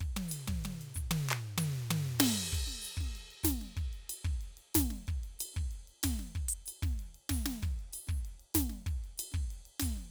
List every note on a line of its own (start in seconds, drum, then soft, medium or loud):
0.01 kick soft
0.01 ride soft
0.17 high tom loud
0.17 ride soft
0.29 hi-hat pedal medium
0.29 ride bell medium
0.48 kick soft
0.48 high tom medium
0.65 high tom medium
0.65 ride soft
0.81 ride bell soft
0.95 kick soft
0.95 hi-hat pedal medium
0.95 ride soft
1.11 mid tom loud
1.29 percussion loud
1.58 hi-hat pedal medium
1.58 mid tom loud
1.91 mid tom loud
2.20 snare loud
2.20 crash loud
2.53 kick soft
2.53 ride medium
2.68 snare soft
2.82 hi-hat pedal medium
2.82 ride medium
2.97 kick soft
2.97 snare soft
3.16 ride soft
3.31 ride soft
3.44 kick soft
3.44 snare medium
3.44 hi-hat pedal medium
3.44 ride bell medium
3.62 snare soft
3.77 kick soft
3.77 ride soft
3.93 ride soft
4.10 hi-hat pedal loud
4.10 ride bell medium
4.25 kick medium
4.25 snare soft
4.41 ride soft
4.57 ride soft
4.75 kick soft
4.75 snare medium
4.75 hi-hat pedal medium
4.75 ride bell medium
4.91 snare soft
5.08 kick soft
5.08 ride soft
5.24 ride soft
5.40 hi-hat pedal loud
5.40 ride bell medium
5.55 kick soft
5.55 snare soft
5.71 ride soft
5.88 ride soft
6.04 kick soft
6.04 snare medium
6.04 hi-hat pedal medium
6.04 ride bell medium
6.20 snare soft
6.35 kick soft
6.35 ride soft
6.49 closed hi-hat loud
6.49 ride soft
6.66 hi-hat pedal medium
6.66 ride bell medium
6.83 kick medium
6.83 snare soft
7.00 ride soft
7.15 ride soft
7.30 kick soft
7.30 snare medium
7.30 hi-hat pedal medium
7.30 ride medium
7.46 snare medium
7.63 kick soft
7.63 ride bell soft
7.79 ride soft
7.93 hi-hat pedal medium
7.93 ride bell medium
8.08 kick soft
8.08 snare soft
8.25 ride soft
8.40 ride soft
8.55 kick soft
8.55 snare medium
8.55 hi-hat pedal medium
8.55 ride bell medium
8.70 snare soft
8.87 kick soft
8.87 ride soft
9.04 ride soft
9.18 hi-hat pedal medium
9.18 ride bell medium
9.32 kick soft
9.32 snare soft
9.51 ride soft
9.66 ride soft
9.80 kick soft
9.80 snare medium
9.80 hi-hat pedal medium
9.80 ride bell medium
9.98 snare soft